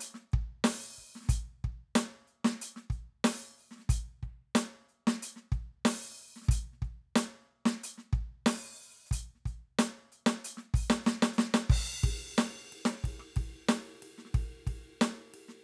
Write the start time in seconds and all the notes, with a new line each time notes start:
0.01 closed hi-hat
0.15 snare
0.32 kick, closed hi-hat
0.65 open hi-hat, snare
0.72 snare
0.98 open hi-hat, kick
1.16 snare
1.21 snare
1.24 snare, hi-hat pedal
1.27 closed hi-hat, kick, snare
1.65 kick, closed hi-hat
1.96 closed hi-hat, snare
2.10 snare
2.28 closed hi-hat
2.45 snare
2.62 closed hi-hat
2.77 snare
2.90 closed hi-hat, kick
3.25 open hi-hat, snare
3.32 snare
3.58 open hi-hat
3.71 snare
3.76 snare
3.80 snare
3.90 closed hi-hat, kick
4.23 kick, closed hi-hat
4.56 closed hi-hat, snare
4.89 closed hi-hat
5.08 snare
5.23 closed hi-hat
5.37 snare
5.52 kick, closed hi-hat
5.86 open hi-hat, snare
6.21 open hi-hat
6.36 snare
6.42 snare, hi-hat pedal
6.45 snare
6.48 kick, snare
6.49 closed hi-hat, snare
6.73 snare
6.82 kick, closed hi-hat
7.16 closed hi-hat, snare
7.66 snare
7.84 closed hi-hat
7.98 snare
8.13 kick, closed hi-hat
8.47 open hi-hat, snare
8.80 open hi-hat
9.07 hi-hat pedal
9.12 closed hi-hat, kick
9.35 snare
9.46 closed hi-hat, kick
9.79 closed hi-hat, snare
10.13 closed hi-hat
10.27 snare
10.45 closed hi-hat
10.58 snare
10.74 open hi-hat, kick
10.90 snare
11.03 snare, hi-hat pedal
11.23 snare
11.34 hi-hat pedal
11.39 snare
11.54 snare
11.70 kick, crash
11.93 snare
12.04 kick, ride
12.38 snare, ride
12.73 ride
12.86 snare
13.04 kick, ride
13.20 cross-stick
13.37 kick, ride
13.69 snare, ride
14.03 ride
14.18 snare
14.26 snare
14.35 kick, ride
14.67 kick, ride
15.02 snare, ride
15.12 snare
15.16 snare
15.34 ride
15.49 snare